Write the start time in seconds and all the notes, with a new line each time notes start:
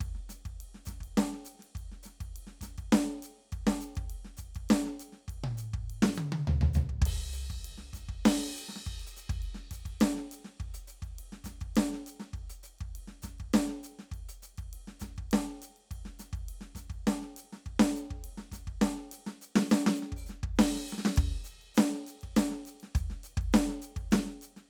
0.01 kick, ride
0.15 snare
0.30 snare, hi-hat pedal, ride
0.46 kick, ride
0.61 ride
0.75 snare
0.86 kick, snare, hi-hat pedal, ride
1.01 kick, ride
1.18 snare, ride
1.33 snare
1.45 hi-hat pedal, ride
1.60 snare, ride
1.65 snare
1.75 kick, ride
1.92 snare
2.03 snare, hi-hat pedal, ride
2.21 kick, ride
2.36 ride
2.47 snare
2.61 kick, snare, hi-hat pedal, ride
2.78 kick, ride
2.93 snare, ride
3.08 snare
3.23 hi-hat pedal, ride
3.39 snare
3.53 kick, ride
3.67 snare
3.81 hi-hat pedal, ride
3.96 kick, ride
4.10 ride
4.25 snare
4.37 kick, hi-hat pedal, ride
4.55 kick, ride
4.70 snare, ride
4.86 snare
5.00 hi-hat pedal, ride
5.13 snare
5.28 kick, ride
5.44 mid tom
5.58 hi-hat pedal, ride
5.74 kick
5.90 ride
6.03 snare
6.15 hi-hat pedal, high tom
6.33 high tom
6.48 floor tom
6.62 floor tom
6.74 floor tom, hi-hat pedal
6.90 kick
7.02 kick, ride, crash
7.33 hi-hat pedal, ride
7.50 kick, ride
7.65 ride
7.78 snare
7.94 kick, snare, hi-hat pedal, ride
8.09 kick
8.26 snare, crash
8.56 hi-hat pedal, ride
8.69 snare
8.76 snare
8.86 kick, ride
9.00 ride
9.07 open hi-hat
9.17 hi-hat pedal
9.30 kick, ride
9.43 ride
9.55 snare
9.71 kick, hi-hat pedal, ride
9.86 kick, ride
10.01 snare, ride
10.17 snare
10.32 hi-hat pedal, ride
10.45 snare
10.60 kick, ride
10.75 closed hi-hat
10.88 hi-hat pedal, ride
11.03 kick, ride
11.19 ride
11.33 snare
11.44 kick, snare, hi-hat pedal, ride
11.61 kick, ride
11.76 snare, ride
11.94 snare
12.07 hi-hat pedal, ride
12.20 snare
12.34 kick, ride
12.50 closed hi-hat
12.64 hi-hat pedal, ride
12.79 kick, ride
12.96 ride
13.08 snare
13.23 kick, snare, hi-hat pedal, ride
13.39 kick, ride
13.54 snare, ride
13.68 snare
13.84 hi-hat pedal, ride
13.99 snare
14.12 kick, ride
14.29 closed hi-hat
14.43 hi-hat pedal, ride
14.54 snare
14.58 kick, ride
14.74 ride
14.88 snare
15.00 kick, snare, hi-hat pedal, ride
15.17 kick, ride
15.32 snare, ride
15.49 snare
15.62 hi-hat pedal, ride
15.77 ride
15.91 kick, ride
16.06 snare
16.19 snare, hi-hat pedal, ride
16.33 kick, ride
16.49 ride
16.61 snare
16.75 kick, snare, hi-hat pedal, ride
16.90 kick, ride
17.07 snare, ride
17.22 snare
17.37 hi-hat pedal, ride
17.53 snare
17.66 kick, ride
17.80 snare
17.96 hi-hat pedal
18.11 kick
18.25 ride
18.38 snare
18.52 kick, snare, hi-hat pedal, ride
18.68 kick, ride
18.82 snare, ride
18.97 snare
19.12 hi-hat pedal, ride
19.27 snare
19.42 hi-hat pedal
19.56 snare
19.70 snare, hi-hat pedal
19.80 snare
19.87 snare
19.96 hi-hat pedal
20.03 snare
20.12 kick
20.17 open hi-hat
20.27 snare, hi-hat pedal
20.44 kick
20.56 snare, hi-hat pedal, crash
20.76 snare
20.88 hi-hat pedal
20.93 snare
20.99 snare
21.06 snare
21.17 kick, ride
21.31 snare
21.40 snare
21.45 hi-hat pedal, ride
21.62 ride
21.75 snare, hi-hat pedal, ride
21.94 snare
22.07 hi-hat pedal, ride
22.22 kick, ride
22.37 snare, hi-hat pedal, ride
22.51 snare
22.66 hi-hat pedal, ride
22.81 snare, ride
22.95 kick, hi-hat pedal, ride
23.10 snare
23.24 hi-hat pedal, ride
23.38 kick, ride
23.53 snare, hi-hat pedal, ride
23.69 snare
23.82 hi-hat pedal, ride
23.97 kick, ride
24.11 snare, hi-hat pedal, ride
24.27 snare
24.42 hi-hat pedal, ride
24.57 snare, ride